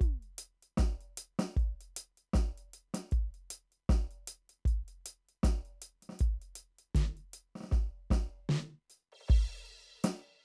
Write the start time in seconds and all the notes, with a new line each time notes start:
0.01 kick, closed hi-hat
0.22 closed hi-hat
0.38 closed hi-hat
0.62 closed hi-hat
0.77 kick, snare, closed hi-hat
1.01 closed hi-hat
1.17 closed hi-hat
1.39 snare, closed hi-hat
1.57 kick, closed hi-hat
1.81 closed hi-hat
1.96 closed hi-hat
2.17 closed hi-hat
2.33 kick, snare, closed hi-hat
2.58 closed hi-hat
2.73 closed hi-hat
2.94 snare, closed hi-hat
3.11 kick, closed hi-hat
3.34 closed hi-hat
3.50 closed hi-hat
3.72 closed hi-hat
3.89 kick, snare, closed hi-hat
4.11 closed hi-hat
4.27 closed hi-hat
4.49 closed hi-hat
4.65 kick, closed hi-hat
4.88 closed hi-hat
5.06 closed hi-hat
5.29 closed hi-hat
5.43 kick, snare, closed hi-hat
5.65 closed hi-hat
5.82 closed hi-hat
6.02 snare, closed hi-hat
6.09 snare
6.12 snare
6.19 kick, closed hi-hat
6.42 closed hi-hat
6.55 closed hi-hat
6.79 closed hi-hat
6.95 kick, snare, closed hi-hat
7.17 closed hi-hat
7.33 closed hi-hat
7.55 snare
7.61 snare
7.64 snare
7.68 snare
7.71 kick, snare
8.10 kick, snare, ride
8.49 snare
8.90 hi-hat pedal
9.12 crash
9.20 crash
9.28 kick, crash
9.66 closed hi-hat
10.04 snare, closed hi-hat